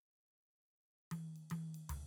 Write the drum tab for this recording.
Ride      |--------x-xx-xx-|
High tom  |--------o--o----|
Floor tom |--------------o-|